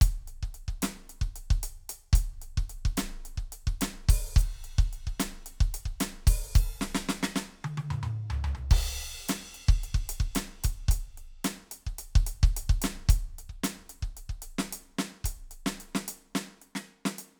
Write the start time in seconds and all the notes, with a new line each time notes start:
0.01 kick, closed hi-hat
0.27 closed hi-hat
0.43 kick
0.54 closed hi-hat
0.68 kick
0.82 snare, closed hi-hat
1.09 closed hi-hat
1.21 kick
1.36 closed hi-hat
1.50 kick
1.63 closed hi-hat
1.89 closed hi-hat
2.13 kick, closed hi-hat
2.42 closed hi-hat
2.57 kick
2.70 closed hi-hat
2.85 kick
2.97 snare, closed hi-hat
3.25 closed hi-hat
3.37 kick
3.52 closed hi-hat
3.67 kick
3.81 snare, closed hi-hat
4.09 kick, open hi-hat
4.36 kick, hi-hat pedal, crash
4.64 closed hi-hat
4.78 kick
4.93 closed hi-hat
5.07 kick
5.20 snare, closed hi-hat
5.46 closed hi-hat
5.60 kick
5.74 closed hi-hat
5.85 kick
6.00 snare, closed hi-hat
6.27 kick, open hi-hat
6.55 kick, hi-hat pedal, crash
6.81 snare
6.95 snare
7.09 snare
7.23 snare
7.36 snare
7.64 high tom
7.77 high tom
7.90 mid tom
8.03 mid tom
8.30 floor tom
8.44 floor tom
8.55 floor tom
8.71 kick, crash
9.29 snare, closed hi-hat
9.54 closed hi-hat
9.68 kick
9.83 closed hi-hat
9.94 kick
10.09 closed hi-hat
10.20 kick
10.35 snare, closed hi-hat
10.64 kick, closed hi-hat
10.88 kick, closed hi-hat
11.17 closed hi-hat
11.44 snare, closed hi-hat
11.71 closed hi-hat
11.86 kick
11.98 closed hi-hat
12.15 kick
12.26 closed hi-hat
12.43 kick
12.56 closed hi-hat
12.69 kick
12.82 snare, closed hi-hat
13.09 kick, closed hi-hat
13.38 closed hi-hat
13.49 kick
13.64 snare, closed hi-hat
13.89 closed hi-hat
14.02 kick
14.17 closed hi-hat
14.29 kick
14.42 closed hi-hat
14.58 snare
14.72 closed hi-hat
14.99 snare
15.24 kick, closed hi-hat
15.51 closed hi-hat
15.66 snare
15.80 closed hi-hat
15.95 snare
16.08 closed hi-hat
16.35 snare
16.62 closed hi-hat
16.75 snare
17.05 snare
17.18 closed hi-hat